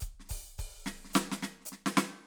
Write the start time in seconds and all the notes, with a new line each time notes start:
0.01 closed hi-hat, kick
0.20 snare
0.25 snare
0.29 open hi-hat, kick, snare
0.32 snare
0.59 open hi-hat, kick
0.87 snare
1.05 snare
1.10 snare
1.14 snare, hi-hat pedal
1.16 snare
1.32 snare
1.43 snare
1.61 snare
1.66 hi-hat pedal
1.73 snare
1.87 snare
1.98 snare
2.16 snare